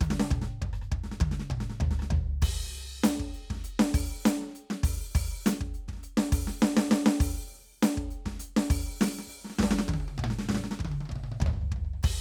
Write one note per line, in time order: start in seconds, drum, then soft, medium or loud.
0.01 kick loud
0.01 hi-hat pedal medium
0.01 high tom loud
0.11 snare medium
0.20 snare loud
0.31 kick loud
0.31 mid tom loud
0.42 snare medium
0.62 kick medium
0.62 floor tom medium
0.73 cross-stick medium
0.82 cross-stick soft
0.92 kick loud
0.92 mid tom medium
1.04 snare soft
1.12 snare medium
1.21 kick loud
1.21 high tom loud
1.32 snare medium
1.40 snare medium
1.50 kick medium
1.50 mid tom loud
1.61 snare medium
1.70 snare soft
1.75 snare soft
1.80 kick medium
1.80 floor tom loud
1.91 snare medium
1.99 cross-stick medium
1.99 snare medium
2.11 kick loud
2.11 floor tom loud
2.42 kick loud
2.42 hi-hat pedal medium
2.42 crash loud
3.04 closed hi-hat loud
3.04 snare loud
3.20 kick medium
3.34 closed hi-hat soft
3.50 kick medium
3.50 snare soft
3.55 snare soft
3.58 snare soft
3.61 closed hi-hat medium
3.61 snare soft
3.80 snare loud
3.94 open hi-hat loud
3.94 kick loud
4.26 open hi-hat loud
4.26 snare loud
4.26 hi-hat pedal medium
4.41 snare soft
4.46 snare soft
4.49 snare soft
4.51 snare soft
4.55 closed hi-hat medium
4.70 snare medium
4.84 open hi-hat loud
4.84 kick loud
5.15 open hi-hat loud
5.15 kick loud
5.45 closed hi-hat loud
5.45 snare loud
5.45 hi-hat pedal soft
5.61 kick medium
5.66 snare soft
5.74 closed hi-hat soft
5.88 kick medium
5.88 snare soft
5.93 snare soft
5.97 snare soft
6.03 closed hi-hat medium
6.17 snare loud
6.32 open hi-hat loud
6.32 kick loud
6.48 snare medium
6.60 snare loud
6.60 hi-hat pedal medium
6.77 snare loud
6.88 kick soft
6.88 snare loud
7.06 snare loud
7.20 open hi-hat loud
7.20 kick loud
7.72 kick soft
7.83 open hi-hat loud
7.83 snare loud
7.83 hi-hat pedal soft
7.98 kick medium
8.11 closed hi-hat soft
8.26 kick medium
8.26 snare medium
8.31 snare soft
8.36 snare soft
8.40 closed hi-hat loud
8.57 snare loud
8.70 open hi-hat loud
8.70 kick loud
8.70 snare soft
9.01 open hi-hat loud
9.01 snare loud
9.19 snare soft
9.27 open hi-hat medium
9.27 kick soft
9.45 snare soft
9.50 snare medium
9.53 snare soft
9.59 kick medium
9.59 snare loud
9.63 snare loud
9.71 snare loud
9.79 snare loud
9.88 kick loud
9.88 high tom loud
9.94 high tom loud
10.00 high tom medium
10.08 high tom medium
10.13 high tom soft
10.18 kick medium
10.18 mid tom loud
10.24 mid tom loud
10.30 snare medium
10.39 snare medium
10.43 snare medium
10.49 kick medium
10.49 snare loud
10.55 snare medium
10.64 snare medium
10.71 snare medium
10.79 kick medium
10.79 high tom medium
10.85 high tom loud
10.89 high tom medium
10.92 high tom medium
11.01 high tom medium
11.06 mid tom medium
11.06 high tom soft
11.12 kick medium
11.16 mid tom medium
11.20 mid tom soft
11.24 mid tom medium
11.32 mid tom medium
11.40 kick loud
11.40 floor tom loud
11.46 floor tom medium
11.50 floor tom soft
11.54 floor tom medium
11.62 floor tom soft
11.72 kick medium
11.72 floor tom soft
11.76 floor tom medium
11.85 floor tom soft
11.94 floor tom soft
12.01 kick soft
12.01 crash loud
12.04 kick loud